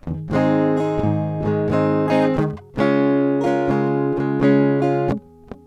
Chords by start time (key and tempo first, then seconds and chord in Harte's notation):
F minor, 88 BPM
0.00 D#:7/5
0.33 G#:maj
3.06 C#:maj6